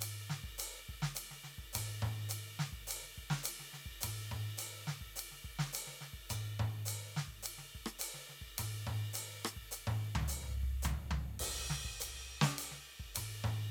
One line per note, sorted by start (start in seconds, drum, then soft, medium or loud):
0.01 hi-hat pedal medium
0.01 ride loud
0.30 snare medium
0.44 kick soft
0.58 hi-hat pedal medium
0.58 ride loud
0.89 kick soft
1.02 snare medium
1.15 hi-hat pedal medium
1.15 ride loud
1.31 snare soft
1.44 snare soft
1.58 kick soft
1.73 hi-hat pedal medium
1.73 high tom medium
1.73 ride loud
2.02 high tom medium
2.29 hi-hat pedal medium
2.29 ride loud
2.60 snare medium
2.73 kick soft
2.87 hi-hat pedal medium
2.87 ride loud
3.03 snare soft
3.18 kick soft
3.30 snare medium
3.44 hi-hat pedal loud
3.44 ride loud
3.60 snare soft
3.74 snare soft
3.86 kick soft
4.01 hi-hat pedal medium
4.01 high tom medium
4.01 ride loud
4.32 high tom medium
4.58 hi-hat pedal medium
4.58 ride loud
4.87 snare medium
5.01 kick soft
5.16 hi-hat pedal medium
5.16 ride loud
5.32 snare soft
5.45 kick soft
5.59 snare medium
5.73 hi-hat pedal medium
5.73 ride loud
5.87 snare soft
6.01 snare soft
6.14 kick soft
6.30 hi-hat pedal medium
6.30 high tom medium
6.30 ride bell loud
6.60 high tom medium
6.86 hi-hat pedal medium
6.86 ride loud
7.17 snare medium
7.28 kick soft
7.43 hi-hat pedal medium
7.43 ride loud
7.58 snare soft
7.75 kick soft
7.86 cross-stick medium
7.99 hi-hat pedal medium
7.99 ride loud
8.14 snare soft
8.29 snare soft
8.42 kick soft
8.58 hi-hat pedal medium
8.58 high tom medium
8.58 ride loud
8.87 high tom medium
9.14 hi-hat pedal medium
9.14 ride loud
9.45 cross-stick medium
9.57 kick soft
9.72 hi-hat pedal loud
9.72 ride medium
9.87 high tom medium
10.15 floor tom loud
10.28 hi-hat pedal medium
10.28 ride medium
10.43 high tom soft
10.63 kick soft
10.83 floor tom loud
10.83 hi-hat pedal medium
11.11 floor tom loud
11.40 kick soft
11.40 hi-hat pedal medium
11.40 crash medium
11.70 snare medium
11.85 kick soft
12.00 hi-hat pedal loud
12.00 ride loud
12.15 snare soft
12.42 snare medium
12.59 hi-hat pedal medium
12.59 ride loud
12.72 snare soft
13.00 kick soft
13.15 hi-hat pedal medium
13.15 high tom medium
13.15 ride loud
13.44 high tom medium